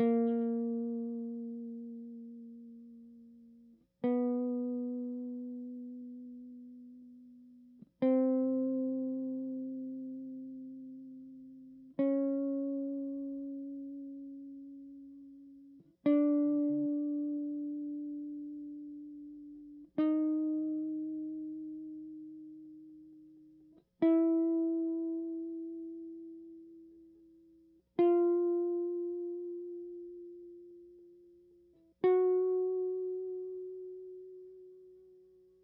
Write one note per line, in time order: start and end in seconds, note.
0.00 3.46 A#3
4.04 7.55 B3
8.03 11.94 C4
12.00 15.81 C#4
16.06 19.88 D4
19.98 23.55 D#4
24.02 27.24 E4
27.99 31.41 F4
32.04 35.26 F#4